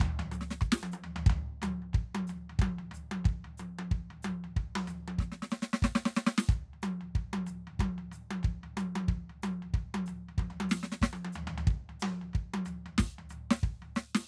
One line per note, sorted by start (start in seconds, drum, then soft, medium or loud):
0.01 kick medium
0.01 floor tom loud
0.20 floor tom loud
0.32 hi-hat pedal medium
0.32 high tom medium
0.42 snare medium
0.51 snare medium
0.62 kick medium
0.62 cross-stick medium
0.73 snare loud
0.84 high tom loud
0.93 hi-hat pedal medium
0.93 high tom medium
1.05 floor tom medium
1.17 floor tom medium
1.27 kick loud
1.27 floor tom medium
1.63 floor tom medium
1.63 hi-hat pedal medium
1.63 high tom loud
1.83 high tom soft
1.94 kick loud
1.94 floor tom soft
2.16 high tom loud
2.28 floor tom medium
2.28 hi-hat pedal medium
2.50 floor tom soft
2.60 kick loud
2.60 high tom loud
2.77 kick soft
2.77 floor tom soft
2.92 floor tom medium
2.92 hi-hat pedal medium
3.12 high tom loud
3.25 kick loud
3.25 floor tom soft
3.45 floor tom soft
3.58 hi-hat pedal medium
3.58 high tom medium
3.80 high tom loud
3.92 kick medium
3.92 floor tom soft
4.11 floor tom soft
4.23 hi-hat pedal medium
4.23 high tom loud
4.31 kick soft
4.45 floor tom soft
4.57 kick medium
4.57 floor tom soft
4.76 high tom loud
4.88 floor tom medium
4.88 hi-hat pedal medium
5.09 high tom loud
5.19 kick medium
5.19 snare soft
5.33 snare soft
5.43 snare medium
5.51 snare medium
5.51 hi-hat pedal medium
5.63 snare medium
5.74 snare medium
5.83 kick medium
5.83 snare loud
5.96 snare loud
6.06 snare loud
6.16 snare loud
6.16 hi-hat pedal medium
6.27 snare loud
6.39 snare loud
6.50 kick loud
6.50 floor tom medium
6.74 floor tom soft
6.83 hi-hat pedal medium
6.83 high tom loud
7.02 floor tom soft
7.16 kick medium
7.16 floor tom soft
7.34 high tom loud
7.47 floor tom soft
7.47 hi-hat pedal medium
7.68 floor tom soft
7.80 kick medium
7.80 high tom loud
7.99 floor tom soft
8.12 floor tom soft
8.12 hi-hat pedal medium
8.32 high tom loud
8.44 kick medium
8.44 floor tom medium
8.64 floor tom soft
8.78 hi-hat pedal medium
8.78 high tom loud
8.96 high tom loud
9.09 kick medium
9.09 floor tom medium
9.30 floor tom soft
9.43 hi-hat pedal medium
9.43 high tom loud
9.63 floor tom soft
9.75 kick medium
9.75 floor tom soft
9.95 high tom loud
10.07 floor tom soft
10.07 hi-hat pedal medium
10.29 floor tom soft
10.39 kick medium
10.39 high tom medium
10.51 floor tom medium
10.61 high tom loud
10.70 snare loud
10.70 hi-hat pedal medium
10.84 snare medium
10.93 snare medium
11.02 kick medium
11.02 snare loud
11.14 high tom medium
11.26 high tom medium
11.33 floor tom medium
11.33 hi-hat pedal medium
11.48 floor tom medium
11.59 floor tom medium
11.68 kick loud
11.90 floor tom soft
12.01 hi-hat pedal medium
12.01 high tom loud
12.22 floor tom soft
12.34 kick medium
12.34 floor tom soft
12.55 high tom loud
12.66 floor tom medium
12.66 hi-hat pedal medium
12.87 floor tom medium
12.99 kick medium
12.99 snare loud
13.19 floor tom medium
13.30 floor tom soft
13.30 hi-hat pedal medium
13.52 snare loud
13.64 kick medium
13.64 floor tom soft
13.83 floor tom soft
13.96 kick soft
13.96 snare medium
13.96 hi-hat pedal medium
14.16 snare loud